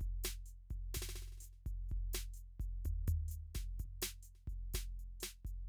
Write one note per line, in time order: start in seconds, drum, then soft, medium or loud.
0.01 kick soft
0.01 closed hi-hat soft
0.07 kick soft
0.24 closed hi-hat medium
0.24 snare medium
0.46 closed hi-hat soft
0.46 hi-hat pedal soft
0.71 kick soft
0.71 closed hi-hat soft
0.77 kick soft
0.95 open hi-hat medium
0.95 kick soft
0.95 snare medium
1.03 kick soft
1.03 snare medium
1.09 snare soft
1.16 snare soft
1.20 snare soft
1.20 closed hi-hat soft
1.28 snare soft
1.38 snare soft
1.38 hi-hat pedal medium
1.43 closed hi-hat soft
1.43 snare soft
1.47 snare soft
1.53 snare soft
1.67 kick soft
1.67 closed hi-hat soft
1.72 kick soft
1.89 kick soft
1.89 closed hi-hat soft
1.98 kick soft
2.14 closed hi-hat medium
2.14 snare medium
2.34 closed hi-hat soft
2.34 hi-hat pedal soft
2.60 kick soft
2.60 closed hi-hat soft
2.66 kick soft
2.85 kick soft
2.85 closed hi-hat soft
2.85 floor tom medium
3.08 closed hi-hat medium
3.08 floor tom medium
3.29 closed hi-hat soft
3.29 hi-hat pedal soft
3.55 closed hi-hat soft
3.55 kick soft
3.55 snare soft
3.62 kick soft
3.80 closed hi-hat soft
3.80 kick soft
3.86 kick soft
4.02 closed hi-hat medium
4.02 snare medium
4.23 closed hi-hat soft
4.23 hi-hat pedal soft
4.36 snare soft
4.48 kick soft
4.48 closed hi-hat soft
4.53 kick soft
4.74 closed hi-hat medium
4.74 kick soft
4.74 snare medium
4.80 kick soft
5.00 closed hi-hat soft
5.21 closed hi-hat medium
5.21 snare medium
5.21 hi-hat pedal medium
5.45 closed hi-hat soft
5.45 kick soft